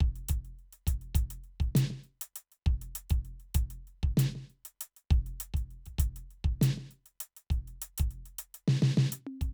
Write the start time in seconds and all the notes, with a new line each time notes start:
0.01 kick, closed hi-hat
0.16 closed hi-hat
0.29 closed hi-hat, kick
0.45 closed hi-hat
0.59 closed hi-hat
0.73 closed hi-hat
0.87 kick, closed hi-hat
1.02 closed hi-hat
1.15 closed hi-hat, kick
1.31 closed hi-hat
1.44 closed hi-hat
1.60 kick, closed hi-hat
1.76 closed hi-hat, snare
1.91 snare
2.04 closed hi-hat
2.22 closed hi-hat
2.36 closed hi-hat
2.52 closed hi-hat
2.67 kick, closed hi-hat
2.82 closed hi-hat
2.96 closed hi-hat
3.10 closed hi-hat, kick
3.25 closed hi-hat
3.40 closed hi-hat
3.55 closed hi-hat, kick
3.71 closed hi-hat
3.88 closed hi-hat
4.04 kick
4.18 closed hi-hat, snare
4.36 snare
4.50 closed hi-hat
4.66 closed hi-hat
4.81 closed hi-hat
4.97 closed hi-hat
5.11 kick, closed hi-hat
5.27 closed hi-hat
5.41 closed hi-hat
5.54 closed hi-hat, kick
5.71 closed hi-hat
5.86 kick, closed hi-hat
5.99 closed hi-hat, kick
6.17 closed hi-hat
6.31 closed hi-hat
6.45 kick
6.62 closed hi-hat, snare
6.78 snare
6.91 closed hi-hat
7.06 closed hi-hat
7.21 closed hi-hat
7.37 closed hi-hat
7.51 kick, closed hi-hat
7.68 closed hi-hat
7.82 closed hi-hat
7.98 closed hi-hat, kick
8.11 closed hi-hat
8.26 closed hi-hat
8.39 closed hi-hat
8.55 closed hi-hat
8.68 snare
8.83 snare
8.98 snare
9.13 closed hi-hat
9.27 high tom
9.42 closed hi-hat, kick